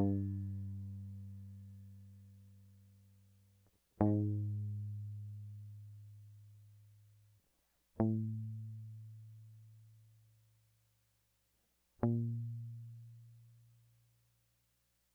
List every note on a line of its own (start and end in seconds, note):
0.00 3.70 G2
4.03 7.40 G#2
8.01 10.79 A2
12.05 14.29 A#2